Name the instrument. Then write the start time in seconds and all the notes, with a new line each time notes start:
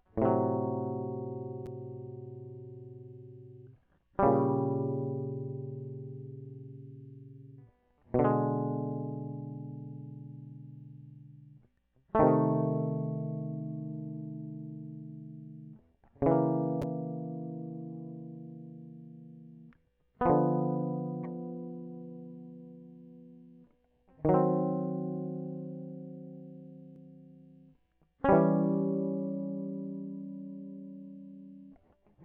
electric guitar
0.19 A2 C3
0.26 F#3
4.20 G3
4.24 A#2 C#3
8.16 B2
8.20 D3
8.25 G#3
12.15 A3
12.20 C3 D#3
16.23 C#3 E3
16.32 A#3
20.22 B3
20.26 F3
20.31 D3
24.26 D#3 F#3
24.35 C4
28.25 C#4
28.29 E3 G3